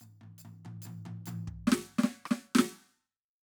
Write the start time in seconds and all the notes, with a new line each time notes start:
0.01 floor tom, percussion
0.22 floor tom, high tom
0.39 percussion
0.45 floor tom, high tom
0.65 floor tom, high tom
0.82 high tom, percussion
0.87 floor tom
1.06 floor tom, high tom
1.26 floor tom, high tom, percussion
1.48 kick
1.68 snare
1.72 snare
1.99 snare, percussion
2.04 snare
2.26 cross-stick
2.31 snare
2.55 snare
2.59 snare